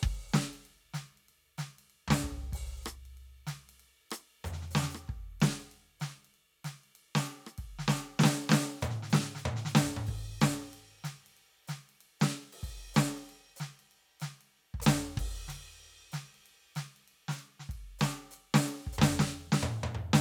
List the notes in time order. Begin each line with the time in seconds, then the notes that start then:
0.03 kick, ride
0.33 snare, hi-hat pedal, ride
0.54 ride
0.66 ride
0.94 snare, hi-hat pedal, ride
1.18 ride
1.29 ride
1.58 snare, hi-hat pedal, ride
1.79 ride
1.91 ride
2.08 snare, floor tom
2.13 hi-hat pedal
2.24 kick
2.53 open hi-hat, kick, ride
2.83 cross-stick, hi-hat pedal, ride
3.06 ride
3.18 ride
3.48 snare, hi-hat pedal, ride
3.70 ride
3.80 ride
4.11 cross-stick, hi-hat pedal, ride
4.45 hi-hat pedal, mid tom
4.54 snare
4.62 snare
4.71 hi-hat pedal
4.76 snare
4.83 snare
4.91 hi-hat pedal
4.95 cross-stick
5.08 kick, mid tom
5.41 snare, hi-hat pedal, ride
5.61 ride
5.72 ride
6.01 snare, hi-hat pedal, ride
6.25 ride
6.35 ride
6.65 snare, hi-hat pedal, ride
6.84 ride
6.96 ride
7.16 snare, hi-hat pedal
7.27 ride
7.47 cross-stick
7.59 kick, ride
7.79 snare
7.89 snare
8.20 snare
8.24 snare
8.50 snare, hi-hat pedal
8.52 snare
8.83 hi-hat pedal, high tom
8.91 snare
9.03 snare
9.11 snare, hi-hat pedal
9.25 snare
9.36 snare, hi-hat pedal
9.46 high tom
9.57 snare
9.66 snare, hi-hat pedal
9.76 snare
9.84 kick, mid tom
9.97 high tom
10.07 kick, crash
10.42 snare, ride
10.74 ride
11.05 snare, hi-hat pedal, ride
11.27 ride
11.38 ride
11.68 snare, hi-hat pedal, ride
11.90 ride
12.01 ride
12.21 snare, hi-hat pedal
12.32 ride
12.53 crash
12.64 kick, hi-hat pedal, ride
12.95 snare, hi-hat pedal
13.18 ride
13.30 ride
13.57 snare, hi-hat pedal, ride
13.80 ride
13.92 ride
14.21 snare, hi-hat pedal, ride
14.42 ride
14.75 kick
14.81 hi-hat pedal, mid tom
14.87 snare
15.18 kick, crash
15.49 snare, hi-hat pedal, ride
15.79 ride
16.12 snare, hi-hat pedal, ride
16.35 ride
16.47 ride
16.76 snare, hi-hat pedal, ride
16.97 ride
17.08 ride
17.29 snare, hi-hat pedal
17.40 ride
17.60 snare
17.70 kick, ride
18.00 snare, hi-hat pedal, ride
18.32 hi-hat pedal, ride
18.55 snare, hi-hat pedal
18.69 ride
18.87 kick
18.93 hi-hat pedal
18.99 snare, mid tom
19.20 snare
19.28 snare
19.53 snare
19.63 high tom
19.84 high tom
19.95 mid tom
20.14 snare